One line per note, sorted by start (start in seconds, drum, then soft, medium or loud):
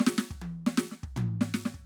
0.00 snare loud
0.07 snare loud
0.18 snare loud
0.31 kick medium
0.42 high tom loud
0.67 snare loud
0.78 snare loud
0.92 snare medium
1.04 kick medium
1.17 floor tom loud
1.17 high tom loud
1.41 snare loud
1.54 snare medium
1.66 snare medium
1.75 kick soft